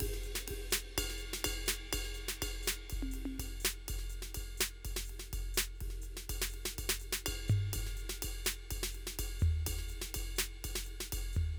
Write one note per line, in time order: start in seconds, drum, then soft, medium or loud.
0.01 kick soft
0.01 ride loud
0.09 kick soft
0.14 snare soft
0.24 hi-hat pedal medium
0.24 ride soft
0.36 snare medium
0.48 kick soft
0.48 ride loud
0.71 snare loud
0.71 hi-hat pedal medium
0.98 kick soft
0.98 ride bell loud
1.05 kick soft
1.10 snare soft
1.18 hi-hat pedal medium
1.18 ride soft
1.34 snare medium
1.40 hi-hat pedal soft
1.45 kick soft
1.45 ride bell loud
1.67 snare loud
1.67 hi-hat pedal medium
1.89 hi-hat pedal soft
1.93 kick soft
1.93 ride bell loud
2.00 kick soft
2.05 snare soft
2.15 hi-hat pedal medium
2.15 ride soft
2.29 snare medium
2.43 kick soft
2.43 ride bell loud
2.64 hi-hat pedal medium
2.68 snare loud
2.90 kick soft
2.90 ride bell medium
3.00 kick soft
3.00 high tom medium
3.12 hi-hat pedal medium
3.12 ride medium
3.26 closed hi-hat soft
3.26 high tom medium
3.40 kick soft
3.40 ride bell medium
3.46 kick soft
3.61 hi-hat pedal medium
3.65 snare loud
3.89 kick soft
3.89 ride bell medium
3.97 kick soft
3.97 snare soft
4.10 hi-hat pedal medium
4.10 ride soft
4.23 snare medium
4.35 kick soft
4.35 ride bell medium
4.44 kick soft
4.58 snare loud
4.58 hi-hat pedal medium
4.85 kick soft
4.85 ride bell medium
4.92 kick soft
4.97 snare medium
5.06 hi-hat pedal medium
5.10 ride soft
5.20 snare medium
5.34 kick soft
5.34 ride bell medium
5.40 kick soft
5.55 snare loud
5.55 hi-hat pedal medium
5.76 hi-hat pedal soft
5.81 kick soft
5.81 ride medium
5.88 kick soft
5.88 snare soft
6.03 hi-hat pedal medium
6.03 ride soft
6.17 snare medium
6.30 kick soft
6.30 ride bell medium
6.36 kick soft
6.42 snare medium
6.51 hi-hat pedal medium
6.51 ride soft
6.66 snare medium
6.79 kick soft
6.79 ride bell medium
6.85 kick soft
6.90 snare loud
7.00 hi-hat pedal medium
7.00 ride soft
7.13 snare medium
7.27 kick soft
7.27 ride bell loud
7.35 kick soft
7.49 hi-hat pedal medium
7.49 floor tom loud
7.74 kick soft
7.74 ride bell medium
7.83 kick soft
7.87 snare soft
7.98 hi-hat pedal medium
7.98 ride soft
8.10 snare medium
8.23 kick soft
8.23 ride bell loud
8.31 kick soft
8.45 snare loud
8.45 hi-hat pedal medium
8.71 kick soft
8.71 ride bell medium
8.78 kick soft
8.84 snare medium
8.93 hi-hat pedal medium
8.93 ride soft
9.07 snare medium
9.19 kick soft
9.19 ride bell medium
9.26 kick soft
9.40 floor tom loud
9.40 hi-hat pedal medium
9.67 kick soft
9.67 ride bell loud
9.75 kick soft
9.79 snare soft
9.89 hi-hat pedal medium
9.89 ride soft
10.02 snare medium
10.15 kick soft
10.15 ride bell medium
10.23 kick soft
10.37 snare loud
10.37 hi-hat pedal medium
10.65 kick soft
10.65 ride bell medium
10.72 kick soft
10.76 snare medium
10.85 hi-hat pedal medium
10.85 ride soft
11.01 snare medium
11.13 kick soft
11.13 ride bell medium
11.20 kick soft
11.34 floor tom loud
11.34 hi-hat pedal medium